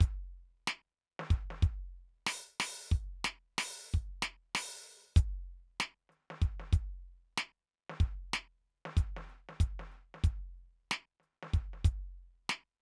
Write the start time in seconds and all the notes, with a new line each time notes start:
0.01 closed hi-hat, kick
0.68 closed hi-hat, snare
1.20 snare
1.31 closed hi-hat, kick
1.51 snare
1.63 closed hi-hat, kick
2.27 open hi-hat, snare
2.60 open hi-hat, snare
2.91 kick, hi-hat pedal
3.25 closed hi-hat, snare
3.58 open hi-hat, snare
3.93 kick, hi-hat pedal
4.23 closed hi-hat, snare
4.55 open hi-hat, snare
5.15 closed hi-hat, kick, hi-hat pedal
5.80 closed hi-hat, snare
6.09 snare, closed hi-hat
6.30 snare
6.42 kick, closed hi-hat
6.60 snare
6.73 closed hi-hat, kick
7.38 closed hi-hat, snare
7.90 snare
8.00 kick, closed hi-hat
8.34 closed hi-hat, snare
8.86 snare
8.97 closed hi-hat, kick
9.17 snare
9.30 closed hi-hat
9.49 snare
9.60 closed hi-hat, kick
9.80 snare
9.92 closed hi-hat
10.14 snare
10.24 closed hi-hat, kick
10.58 closed hi-hat
10.91 closed hi-hat, snare
11.20 snare, closed hi-hat
11.43 snare
11.54 closed hi-hat, kick
11.74 snare
11.85 closed hi-hat, kick
12.50 closed hi-hat, snare